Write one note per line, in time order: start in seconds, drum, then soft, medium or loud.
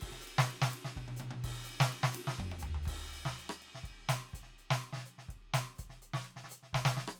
0.01 kick soft
0.01 crash medium
0.08 kick soft
0.11 kick soft
0.11 snare soft
0.21 hi-hat pedal medium
0.27 ride bell medium
0.38 snare loud
0.51 ride medium
0.62 snare loud
0.69 hi-hat pedal medium
0.69 ride medium
0.84 snare medium
0.96 kick soft
0.96 high tom medium
1.02 kick soft
1.05 kick soft
1.05 high tom medium
1.16 hi-hat pedal medium
1.16 high tom loud
1.31 high tom loud
1.44 kick medium
1.44 crash medium
1.50 kick soft
1.64 hi-hat pedal medium
1.69 ride medium
1.80 snare loud
1.92 ride medium
2.03 snare loud
2.12 hi-hat pedal medium
2.12 ride loud
2.27 snare medium
2.39 kick soft
2.39 mid tom loud
2.44 kick soft
2.47 kick soft
2.52 mid tom medium
2.59 floor tom medium
2.59 hi-hat pedal medium
2.74 floor tom medium
2.83 kick medium
2.83 hi-hat pedal soft
2.83 floor tom soft
2.88 crash medium
2.94 kick soft
2.98 kick soft
3.00 kick soft
3.13 open hi-hat medium
3.25 snare medium
3.25 hi-hat pedal soft
3.38 closed hi-hat soft
3.49 cross-stick medium
3.56 hi-hat pedal soft
3.62 closed hi-hat soft
3.75 snare soft
3.83 kick soft
3.83 closed hi-hat soft
3.92 kick soft
4.09 closed hi-hat loud
4.09 snare loud
4.29 hi-hat pedal soft
4.33 closed hi-hat medium
4.33 kick soft
4.42 snare soft
4.58 closed hi-hat soft
4.70 snare loud
4.84 closed hi-hat soft
4.93 snare medium
4.97 snare medium
5.05 hi-hat pedal medium
5.18 snare soft
5.29 kick soft
5.29 closed hi-hat soft
5.34 kick soft
5.54 closed hi-hat medium
5.54 snare loud
5.75 closed hi-hat medium
5.75 hi-hat pedal soft
5.79 kick soft
5.87 kick soft
5.87 snare soft
6.02 closed hi-hat soft
6.13 snare medium
6.24 closed hi-hat soft
6.31 closed hi-hat soft
6.36 snare soft
6.44 snare soft
6.49 closed hi-hat medium
6.49 hi-hat pedal medium
6.63 snare soft
6.73 kick soft
6.73 snare medium
6.85 snare loud
6.97 snare medium
7.08 cross-stick medium
7.15 hi-hat pedal soft